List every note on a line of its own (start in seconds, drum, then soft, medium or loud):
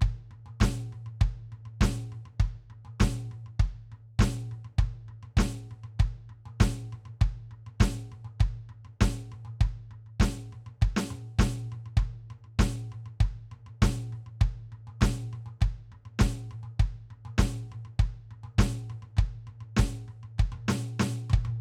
0.01 kick loud
0.01 mid tom medium
0.31 mid tom medium
0.46 mid tom medium
0.60 kick loud
0.60 snare loud
0.60 mid tom loud
0.93 mid tom medium
1.06 mid tom medium
1.21 kick loud
1.21 mid tom medium
1.52 mid tom medium
1.65 mid tom medium
1.81 kick loud
1.81 snare loud
1.81 mid tom loud
2.12 mid tom medium
2.25 mid tom medium
2.40 kick loud
2.40 mid tom medium
2.70 mid tom soft
2.85 mid tom medium
3.00 kick loud
3.00 snare loud
3.00 mid tom loud
3.31 mid tom medium
3.46 mid tom soft
3.60 kick loud
3.60 mid tom medium
3.92 mid tom medium
4.19 kick loud
4.19 snare loud
4.19 mid tom loud
4.51 mid tom medium
4.65 mid tom medium
4.79 kick loud
4.79 mid tom medium
5.08 mid tom soft
5.23 mid tom medium
5.37 kick loud
5.37 snare loud
5.37 mid tom loud
5.71 mid tom medium
5.84 mid tom medium
5.99 kick loud
5.99 mid tom medium
6.29 mid tom soft
6.46 mid tom medium
6.60 kick loud
6.60 snare loud
6.60 mid tom loud
6.92 mid tom medium
7.05 mid tom medium
7.21 kick loud
7.21 mid tom medium
7.51 mid tom soft
7.67 mid tom medium
7.80 kick loud
7.80 snare loud
7.80 mid tom loud
8.12 mid tom medium
8.25 mid tom medium
8.40 kick loud
8.40 mid tom medium
8.69 mid tom soft
8.85 mid tom medium
9.01 kick loud
9.01 snare loud
9.01 mid tom loud
9.32 mid tom medium
9.45 mid tom medium
9.61 kick loud
9.61 mid tom medium
9.91 mid tom soft
10.06 mid tom soft
10.20 kick loud
10.20 snare loud
10.20 mid tom loud
10.53 mid tom medium
10.66 mid tom medium
10.82 kick loud
10.82 mid tom medium
10.96 snare loud
11.10 mid tom medium
11.39 kick loud
11.39 snare loud
11.39 mid tom loud
11.72 mid tom medium
11.86 mid tom medium
11.97 kick loud
11.97 mid tom medium
12.30 mid tom medium
12.44 mid tom soft
12.59 kick loud
12.59 snare loud
12.59 mid tom loud
12.92 mid tom medium
13.06 mid tom medium
13.20 kick loud
13.20 mid tom medium
13.52 mid tom medium
13.66 mid tom medium
13.82 kick loud
13.82 snare loud
13.82 mid tom loud
14.12 mid tom medium
14.26 mid tom soft
14.41 kick loud
14.41 mid tom medium
14.72 mid tom medium
14.87 mid tom medium
15.01 kick loud
15.01 snare loud
15.01 mid tom loud
15.33 mid tom medium
15.46 mid tom medium
15.61 kick loud
15.61 mid tom medium
15.92 mid tom soft
16.05 mid tom medium
16.19 kick loud
16.19 snare loud
16.19 mid tom loud
16.51 mid tom medium
16.63 mid tom medium
16.80 kick loud
16.80 mid tom medium
17.10 mid tom medium
17.25 mid tom medium
17.38 kick loud
17.38 snare loud
17.38 mid tom loud
17.72 mid tom medium
17.85 mid tom medium
17.99 kick loud
17.99 mid tom medium
18.31 mid tom medium
18.43 mid tom medium
18.58 kick loud
18.58 snare loud
18.58 mid tom loud
18.90 mid tom medium
19.02 mid tom medium
19.17 kick loud
19.17 mid tom medium
19.47 mid tom medium
19.61 mid tom medium
19.77 kick loud
19.77 snare loud
19.77 mid tom loud
20.08 mid tom medium
20.23 mid tom medium
20.39 kick loud
20.39 mid tom medium
20.52 mid tom medium
20.68 snare loud
20.68 mid tom loud
21.00 snare loud
21.00 mid tom loud
21.30 kick loud
21.30 mid tom loud
21.45 mid tom medium